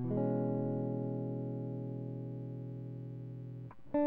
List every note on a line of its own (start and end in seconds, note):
0.00 3.70 B2
0.00 3.56 E3
0.12 3.18 G#3
0.18 3.23 C#4
3.95 4.07 D4